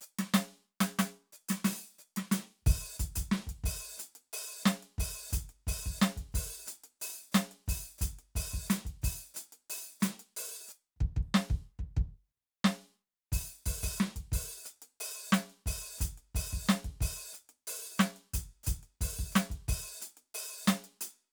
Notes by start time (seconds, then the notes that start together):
0.01 hi-hat pedal
0.19 snare, closed hi-hat
0.34 closed hi-hat, snare
0.81 closed hi-hat, snare
0.99 closed hi-hat, snare
1.33 hi-hat pedal
1.49 closed hi-hat, snare
1.65 open hi-hat, snare
1.98 hi-hat pedal
2.16 snare, closed hi-hat
2.32 open hi-hat, snare
2.62 kick
2.66 open hi-hat, kick
2.96 closed hi-hat, kick, hi-hat pedal
3.16 closed hi-hat, kick
3.32 snare
3.47 kick, closed hi-hat
3.64 open hi-hat, kick
3.97 closed hi-hat, hi-hat pedal
4.15 closed hi-hat
4.33 open hi-hat
4.63 closed hi-hat, snare, hi-hat pedal
4.83 closed hi-hat
4.98 open hi-hat, kick
5.30 closed hi-hat, kick, hi-hat pedal
5.49 closed hi-hat
5.67 open hi-hat, kick
5.86 kick
5.98 closed hi-hat, snare, hi-hat pedal
6.17 kick, closed hi-hat
6.32 open hi-hat, kick, hi-hat pedal
6.66 closed hi-hat, hi-hat pedal
6.84 closed hi-hat
7.00 open hi-hat, hi-hat pedal
7.32 closed hi-hat, snare, hi-hat pedal
7.51 closed hi-hat
7.66 open hi-hat, kick, hi-hat pedal
7.98 closed hi-hat, kick, hi-hat pedal
8.19 closed hi-hat
8.35 open hi-hat, kick
8.53 kick
8.66 closed hi-hat, snare, hi-hat pedal
8.85 kick, closed hi-hat
9.02 open hi-hat, kick, hi-hat pedal
9.34 closed hi-hat, hi-hat pedal
9.52 closed hi-hat
9.70 open hi-hat
10.00 closed hi-hat, snare, hi-hat pedal
10.19 closed hi-hat
10.37 open hi-hat
10.68 hi-hat pedal
10.96 kick
11.00 kick
11.16 kick
11.23 crash
11.34 snare
11.50 kick
11.79 kick
11.92 kick
11.97 kick
12.64 snare
13.32 open hi-hat, kick
13.66 open hi-hat, kick
13.83 open hi-hat, kick
13.98 snare, hi-hat pedal
14.16 kick, closed hi-hat
14.32 open hi-hat, kick
14.65 closed hi-hat, hi-hat pedal
14.82 closed hi-hat
15.00 open hi-hat
15.30 closed hi-hat, snare, hi-hat pedal
15.50 closed hi-hat
15.66 open hi-hat, kick
15.98 closed hi-hat, kick, hi-hat pedal
16.18 closed hi-hat
16.35 open hi-hat, kick
16.53 kick
16.66 closed hi-hat, snare, hi-hat pedal
16.84 kick, closed hi-hat
17.01 open hi-hat, kick
17.33 closed hi-hat, hi-hat pedal
17.49 closed hi-hat
17.67 open hi-hat
17.98 closed hi-hat, snare, hi-hat pedal
18.16 closed hi-hat
18.34 open hi-hat, kick
18.63 closed hi-hat, kick, hi-hat pedal
18.83 closed hi-hat
19.01 open hi-hat, kick
19.19 kick
19.32 snare, hi-hat pedal
19.36 closed hi-hat
19.50 kick, closed hi-hat
19.68 open hi-hat, kick
20.00 closed hi-hat, hi-hat pedal
20.17 closed hi-hat
20.34 open hi-hat
20.65 closed hi-hat, snare, hi-hat pedal
20.84 closed hi-hat
21.01 open hi-hat